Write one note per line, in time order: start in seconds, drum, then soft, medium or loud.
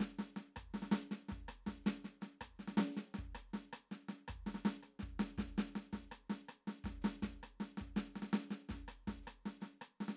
0.01 snare medium
0.01 hi-hat pedal soft
0.20 snare soft
0.37 snare soft
0.37 hi-hat pedal soft
0.57 kick soft
0.57 cross-stick medium
0.75 snare soft
0.75 hi-hat pedal soft
0.83 snare soft
0.92 snare medium
1.12 snare soft
1.29 kick soft
1.29 snare soft
1.49 cross-stick medium
1.49 hi-hat pedal soft
1.67 kick soft
1.67 snare soft
1.84 snare medium
1.84 hi-hat pedal soft
2.05 snare soft
2.22 snare soft
2.22 hi-hat pedal soft
2.42 kick soft
2.42 cross-stick medium
2.60 snare soft
2.60 hi-hat pedal soft
2.68 snare soft
2.78 snare medium
2.97 snare soft
2.97 hi-hat pedal soft
3.15 snare soft
3.19 kick soft
3.36 cross-stick medium
3.36 hi-hat pedal soft
3.54 snare soft
3.74 cross-stick medium
3.74 hi-hat pedal soft
3.92 snare soft
4.09 snare soft
4.09 hi-hat pedal soft
4.29 kick soft
4.29 cross-stick medium
4.47 snare soft
4.47 hi-hat pedal soft
4.55 snare soft
4.66 snare medium
4.83 cross-stick soft
4.83 hi-hat pedal soft
5.00 kick soft
5.00 snare soft
5.20 snare medium
5.20 hi-hat pedal soft
5.38 kick soft
5.38 snare soft
5.57 snare medium
5.57 hi-hat pedal soft
5.76 snare soft
5.93 kick soft
5.93 snare soft
6.02 hi-hat pedal soft
6.12 cross-stick medium
6.30 snare soft
6.49 cross-stick medium
6.68 snare soft
6.85 kick soft
6.85 snare soft
7.02 snare medium
7.02 hi-hat pedal soft
7.23 kick soft
7.23 snare soft
7.44 cross-stick medium
7.61 snare soft
7.61 hi-hat pedal soft
7.78 kick soft
7.78 snare soft
7.97 snare medium
7.97 hi-hat pedal soft
8.16 snare soft
8.23 snare soft
8.34 snare medium
8.51 snare soft
8.70 kick soft
8.70 snare soft
8.71 snare soft
8.89 cross-stick medium
8.89 hi-hat pedal soft
9.08 kick soft
9.08 snare soft
9.24 hi-hat pedal soft
9.28 cross-stick medium
9.46 snare soft
9.61 snare soft
9.61 hi-hat pedal soft
9.82 cross-stick medium
10.01 snare soft
10.09 snare soft